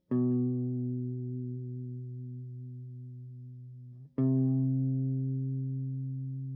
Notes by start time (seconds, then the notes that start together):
0.12 B2
4.20 C3